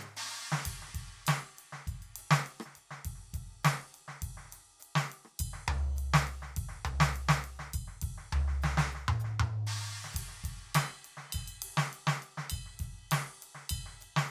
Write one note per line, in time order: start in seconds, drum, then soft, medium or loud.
0.01 snare soft
0.01 hi-hat pedal loud
0.17 crash loud
0.29 hi-hat pedal medium
0.52 snare medium
0.62 kick soft
0.62 hi-hat pedal medium
0.62 ride loud
0.82 snare soft
0.88 cross-stick soft
0.94 kick soft
0.94 hi-hat pedal medium
0.94 ride medium
1.26 snare loud
1.26 hi-hat pedal medium
1.26 ride bell medium
1.57 hi-hat pedal medium
1.57 ride medium
1.73 snare soft
1.87 kick soft
1.87 snare soft
1.87 hi-hat pedal medium
1.87 ride bell soft
1.93 kick soft
1.93 snare soft
1.95 snare soft
2.02 snare soft
2.02 ride bell soft
2.16 hi-hat pedal medium
2.16 ride medium
2.31 snare loud
2.47 hi-hat pedal medium
2.47 ride soft
2.60 cross-stick medium
2.66 snare soft
2.76 kick soft
2.76 hi-hat pedal medium
2.76 ride soft
2.91 snare soft
3.05 kick soft
3.05 hi-hat pedal medium
3.05 ride medium
3.16 snare soft
3.34 kick soft
3.34 hi-hat pedal medium
3.34 ride medium
3.63 snare loud
3.63 hi-hat pedal medium
3.63 ride loud
3.76 snare soft
3.94 hi-hat pedal soft
3.94 ride soft
4.08 snare soft
4.22 kick soft
4.22 hi-hat pedal medium
4.22 ride medium
4.38 snare soft
4.46 snare soft
4.50 snare soft
4.50 hi-hat pedal medium
4.50 ride medium
4.54 snare soft
4.80 hi-hat pedal medium
4.80 ride medium
4.96 snare loud
5.09 hi-hat pedal medium
5.09 ride medium
5.25 cross-stick soft
5.39 kick soft
5.39 hi-hat pedal medium
5.39 ride bell loud
5.46 kick soft
5.50 kick soft
5.50 snare soft
5.67 hi-hat pedal soft
5.67 floor tom loud
5.96 hi-hat pedal medium
5.96 ride medium
6.14 snare loud
6.26 hi-hat pedal medium
6.26 ride soft
6.43 snare soft
6.57 kick medium
6.57 hi-hat pedal medium
6.57 ride medium
6.63 kick soft
6.67 kick soft
6.67 snare soft
6.85 hi-hat pedal medium
6.85 floor tom loud
7.01 snare loud
7.13 hi-hat pedal medium
7.13 ride medium
7.29 snare loud
7.41 hi-hat pedal medium
7.41 ride medium
7.60 snare medium
7.73 kick soft
7.73 hi-hat pedal medium
7.73 ride bell medium
7.81 kick soft
7.84 kick soft
7.88 snare soft
8.02 kick soft
8.02 hi-hat pedal medium
8.02 ride medium
8.13 kick soft
8.18 snare soft
8.32 floor tom loud
8.32 hi-hat pedal medium
8.48 snare soft
8.62 snare medium
8.62 hi-hat pedal medium
8.78 snare loud
8.92 snare soft
8.92 hi-hat pedal medium
9.09 mid tom loud
9.20 hi-hat pedal loud
9.25 snare soft
9.40 mid tom loud
9.67 snare soft
9.67 crash loud
10.05 snare soft
10.13 kick soft
10.13 hi-hat pedal medium
10.13 ride loud
10.24 kick soft
10.29 snare soft
10.33 snare soft
10.37 snare soft
10.40 snare soft
10.42 kick soft
10.42 snare soft
10.42 hi-hat pedal loud
10.42 ride medium
10.52 kick soft
10.75 snare loud
10.75 hi-hat pedal medium
10.75 ride bell loud
10.85 snare soft
11.05 hi-hat pedal medium
11.05 ride medium
11.18 snare soft
11.30 snare soft
11.30 ride bell loud
11.35 kick soft
11.35 hi-hat pedal loud
11.39 snare soft
11.43 kick soft
11.48 ride bell medium
11.62 hi-hat pedal soft
11.62 ride loud
11.78 snare loud
11.93 hi-hat pedal medium
11.93 ride medium
12.07 snare loud
12.22 hi-hat pedal medium
12.22 ride soft
12.38 snare medium
12.50 kick soft
12.50 hi-hat pedal medium
12.50 ride bell loud
12.61 kick soft
12.66 snare soft
12.80 kick soft
12.80 hi-hat pedal medium
12.80 ride medium
12.88 kick soft
13.12 snare loud
13.12 hi-hat pedal medium
13.12 ride loud
13.19 snare soft
13.42 hi-hat pedal medium
13.42 ride medium
13.55 snare soft
13.70 kick soft
13.70 hi-hat pedal medium
13.70 ride bell loud
13.77 kick soft
13.80 kick soft
13.86 snare soft
14.01 hi-hat pedal medium
14.01 ride soft
14.17 snare loud
14.28 hi-hat pedal medium